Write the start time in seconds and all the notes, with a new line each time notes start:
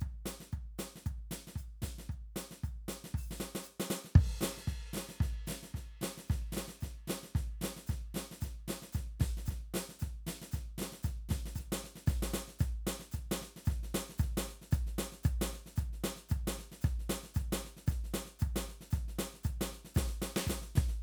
0.01 kick, closed hi-hat
0.26 closed hi-hat, snare
0.41 snare
0.53 kick, closed hi-hat
0.79 closed hi-hat, snare
0.96 snare
1.06 kick, closed hi-hat
1.32 closed hi-hat, snare
1.48 snare
1.56 closed hi-hat, kick
1.83 closed hi-hat, kick, snare
1.99 snare
2.10 kick, closed hi-hat
2.37 closed hi-hat, snare
2.52 snare
2.64 closed hi-hat, kick
2.89 closed hi-hat, snare
3.05 snare
3.15 open hi-hat, kick
3.31 snare
3.38 snare, hi-hat pedal
3.56 snare
3.64 hi-hat pedal
3.80 snare
3.91 snare
4.05 snare
4.16 kick, crash
4.41 snare
4.43 snare
4.58 snare
4.68 kick, snare
4.94 snare
4.97 snare
5.09 snare
5.21 kick, snare
5.47 snare, hi-hat pedal
5.50 snare
5.63 snare
5.75 kick, snare
6.02 snare
6.04 snare
6.18 snare
6.28 kick, snare, hi-hat pedal
6.53 snare
6.57 snare
6.69 snare
6.81 kick, snare, hi-hat pedal
7.08 snare
7.10 snare
7.24 snare
7.36 kick, snare
7.62 snare
7.64 snare
7.77 snare
7.87 kick, snare, hi-hat pedal
8.15 snare
8.17 snare
8.32 snare
8.41 kick, snare, hi-hat pedal
8.69 snare
8.70 snare
8.83 snare
8.93 kick, snare, hi-hat pedal
9.20 kick, snare
9.22 snare
9.38 snare
9.46 kick, snare, hi-hat pedal
9.74 snare
9.76 snare
9.90 snare
10.00 kick, snare, hi-hat pedal
10.27 snare
10.42 snare
10.52 kick, snare, hi-hat pedal
10.79 snare
10.82 snare
10.93 snare
11.04 kick, snare, hi-hat pedal
11.29 kick, snare
11.46 snare
11.56 kick, snare, hi-hat pedal
11.73 snare
11.85 snare
11.96 snare
12.07 kick, snare, hi-hat pedal
12.23 snare
12.34 snare
12.48 snare
12.60 kick, snare, hi-hat pedal
12.87 snare
13.00 snare
13.12 kick, snare, hi-hat pedal
13.32 snare
13.42 snare
13.57 snare
13.66 kick, snare, hi-hat pedal
13.84 snare
13.95 snare
14.10 snare
14.19 kick, snare, hi-hat pedal
14.38 snare
14.49 snare
14.62 snare
14.72 kick, snare, hi-hat pedal
14.87 snare
14.99 snare
15.13 snare
15.24 kick, snare, hi-hat pedal
15.42 snare
15.54 snare
15.67 snare
15.77 kick, snare, hi-hat pedal
15.93 snare
16.04 snare
16.17 snare
16.29 kick, snare, hi-hat pedal
16.48 snare
16.59 snare
16.72 snare
16.82 kick, snare, hi-hat pedal
17.00 snare
17.10 snare
17.24 snare
17.35 kick, snare, hi-hat pedal
17.53 snare
17.65 snare
17.77 snare
17.87 kick, snare, hi-hat pedal
18.04 snare
18.14 snare
18.26 snare
18.40 kick, snare, hi-hat pedal
18.56 snare
18.69 snare
18.81 snare
18.91 kick, snare, hi-hat pedal
19.09 snare
19.19 snare
19.35 snare
19.44 kick, snare, hi-hat pedal
19.62 snare
19.72 snare
19.85 snare
19.95 kick, snare, hi-hat pedal
20.08 snare
20.22 snare
20.37 snare
20.47 kick, snare, hi-hat pedal
20.62 snare
20.76 kick, snare
20.89 snare